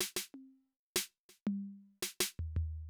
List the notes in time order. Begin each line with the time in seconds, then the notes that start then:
0.00 snare
0.16 snare
0.34 high tom
0.96 snare
1.29 snare
1.47 mid tom
2.02 snare
2.20 snare
2.39 floor tom
2.56 floor tom